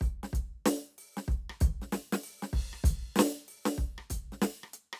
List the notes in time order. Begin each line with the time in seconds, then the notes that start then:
0.01 kick, open hi-hat
0.23 snare
0.33 kick, closed hi-hat
0.66 closed hi-hat, snare
0.75 snare
0.98 open hi-hat
1.17 snare
1.28 kick, closed hi-hat
1.50 cross-stick
1.61 closed hi-hat, kick
1.82 snare
1.93 snare
2.13 snare
2.24 open hi-hat
2.43 snare
2.53 kick, crash
2.73 cross-stick
2.84 closed hi-hat, kick
3.16 snare
3.19 snare
3.48 open hi-hat
3.66 snare
3.78 kick
3.98 cross-stick
4.10 closed hi-hat, kick
4.32 snare
4.42 snare
4.64 cross-stick
4.74 closed hi-hat
4.93 cross-stick